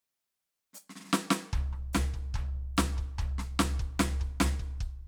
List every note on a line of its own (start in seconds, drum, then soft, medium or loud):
0.73 snare soft
0.73 hi-hat pedal medium
0.89 snare soft
0.95 snare soft
1.00 snare soft
1.04 snare soft
1.08 snare soft
1.13 snare loud
1.30 snare loud
1.53 kick medium
1.53 floor tom loud
1.73 kick soft
1.73 floor tom medium
1.93 snare loud
1.93 floor tom loud
1.93 hi-hat pedal medium
2.14 kick soft
2.14 floor tom soft
2.34 kick medium
2.34 floor tom loud
2.77 snare loud
2.77 floor tom loud
2.77 hi-hat pedal medium
2.97 kick soft
2.97 floor tom soft
3.18 kick medium
3.18 floor tom loud
3.18 hi-hat pedal soft
3.38 snare medium
3.38 floor tom medium
3.59 snare loud
3.59 floor tom loud
3.79 kick medium
3.79 floor tom medium
3.99 snare loud
3.99 floor tom loud
4.20 kick soft
4.20 floor tom soft
4.40 snare loud
4.40 floor tom loud
4.45 snare medium
4.59 kick soft
4.80 kick medium